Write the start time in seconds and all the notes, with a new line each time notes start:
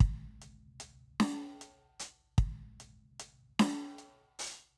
0.01 closed hi-hat, kick
0.42 closed hi-hat
0.81 closed hi-hat
1.21 snare, closed hi-hat
1.62 closed hi-hat
2.00 closed hi-hat
2.39 kick, closed hi-hat
2.81 closed hi-hat
3.21 closed hi-hat
3.60 closed hi-hat, snare
3.99 closed hi-hat
4.40 open hi-hat